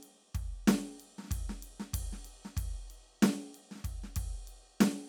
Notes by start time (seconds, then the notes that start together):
0.01 snare, ride
0.35 kick, ride
0.68 snare, ride
1.01 ride
1.19 snare
1.25 snare
1.28 snare
1.31 kick, snare, ride
1.50 snare
1.63 ride
1.80 snare
1.94 kick, ride
2.13 snare
2.25 ride
2.46 snare
2.57 kick, ride
2.91 ride
3.23 snare, ride
3.55 ride
3.72 snare
3.76 snare
3.78 snare
3.85 kick, ride
4.04 snare
4.17 kick, ride
4.48 ride
4.81 snare, ride